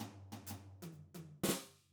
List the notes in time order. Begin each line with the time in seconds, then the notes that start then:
0.00 floor tom
0.32 floor tom
0.47 floor tom, hi-hat pedal
0.82 high tom
0.92 hi-hat pedal
1.15 high tom
1.44 snare, hi-hat pedal
1.49 snare